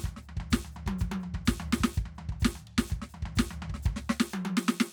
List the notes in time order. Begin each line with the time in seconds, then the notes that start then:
0.01 kick, hi-hat pedal
0.06 floor tom
0.17 snare
0.22 hi-hat pedal
0.29 floor tom
0.37 kick, floor tom
0.51 kick, snare, hi-hat pedal
0.65 floor tom
0.72 hi-hat pedal
0.76 floor tom
0.86 kick, high tom
0.99 kick, floor tom, hi-hat pedal
1.12 high tom
1.20 floor tom, hi-hat pedal
1.34 kick, floor tom
1.46 kick, snare, hi-hat pedal
1.60 floor tom
1.67 hi-hat pedal
1.73 snare
1.80 kick, snare
1.93 hi-hat pedal
1.98 kick
2.06 floor tom
2.15 floor tom, hi-hat pedal
2.29 kick, floor tom
2.40 kick, hi-hat pedal
2.45 snare
2.56 floor tom
2.67 floor tom
2.78 kick, snare
2.87 floor tom, hi-hat pedal
2.92 kick
3.02 snare
3.09 hi-hat pedal
3.14 floor tom
3.22 kick, floor tom
3.36 kick, snare, hi-hat pedal
3.51 floor tom
3.62 floor tom
3.70 kick
3.74 snare
3.83 kick, floor tom, hi-hat pedal
3.96 snare
4.05 hi-hat pedal
4.10 snare
4.20 snare
4.30 hi-hat pedal, high tom
4.45 high tom
4.57 snare
4.68 snare
4.80 snare